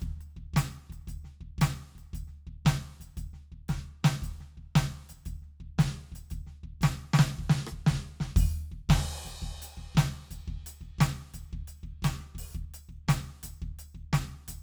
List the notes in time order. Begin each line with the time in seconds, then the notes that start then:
0.01 kick, percussion
0.21 percussion
0.37 kick
0.54 kick, snare, percussion
0.90 kick, percussion
1.08 kick, percussion
1.25 snare
1.41 kick
1.58 kick, snare, percussion
1.95 kick, percussion
2.14 kick, percussion
2.28 snare
2.47 kick
2.65 kick, snare, percussion
3.00 kick, percussion
3.17 kick, percussion
3.34 snare
3.52 kick
3.69 kick, snare, percussion
4.04 kick, snare, percussion
4.18 kick, snare
4.24 snare, percussion
4.41 snare
4.57 kick
4.76 kick, snare, percussion
4.90 snare
5.09 kick, percussion
5.26 kick, percussion
5.42 snare
5.60 kick
5.79 kick, snare, percussion
5.93 snare
6.12 kick, percussion
6.31 kick, percussion
6.47 snare
6.64 kick
6.81 kick, snare, percussion
7.14 snare
7.19 kick, snare
7.39 kick
7.50 snare
7.67 cross-stick
7.72 kick
7.87 kick, snare
8.20 kick, snare
8.36 kick, percussion
8.72 kick
8.89 kick, snare, crash, percussion
9.26 kick, percussion
9.42 kick
9.60 snare, percussion
9.77 kick
9.95 kick, snare, percussion
10.11 snare
10.31 kick, percussion
10.48 kick, snare
10.67 percussion
10.81 kick
10.99 kick, snare, percussion
11.14 snare
11.34 kick, percussion
11.51 kick, snare
11.68 percussion
11.83 kick
12.03 kick, snare, percussion
12.21 snare
12.35 kick, percussion
12.53 kick, percussion
12.62 snare
12.74 percussion
12.89 kick
13.08 kick, snare, percussion
13.22 snare
13.43 kick, percussion
13.62 kick
13.79 percussion
13.95 kick
14.13 kick, snare, percussion
14.29 snare
14.48 kick, percussion